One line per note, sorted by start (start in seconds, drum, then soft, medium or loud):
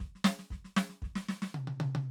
0.00 kick soft
0.00 snare soft
0.15 snare soft
0.24 snare loud
0.39 snare soft
0.50 kick soft
0.50 snare soft
0.64 snare soft
0.76 snare loud
0.89 snare soft
1.02 kick medium
1.02 snare soft
1.15 snare medium
1.29 snare medium
1.42 snare medium
1.54 high tom loud
1.67 high tom medium
1.80 high tom loud
1.95 high tom loud